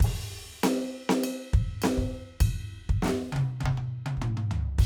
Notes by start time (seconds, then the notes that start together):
0.01 kick, ride bell, crash
0.64 snare, ride bell
1.10 snare
1.24 ride bell
1.54 kick
1.82 snare, ride bell
1.98 kick
2.41 kick, ride bell
2.90 kick
3.01 kick, snare
3.06 snare
3.33 kick, high tom
3.37 high tom
3.61 kick, high tom
3.66 high tom
3.78 mid tom
4.06 high tom
4.17 kick
4.22 mid tom
4.38 mid tom
4.51 floor tom
4.79 kick, ride